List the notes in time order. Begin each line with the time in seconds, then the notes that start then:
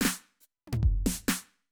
0.01 snare
0.05 snare
0.40 hi-hat pedal
0.67 high tom
0.73 floor tom
0.83 kick
1.06 snare
1.28 snare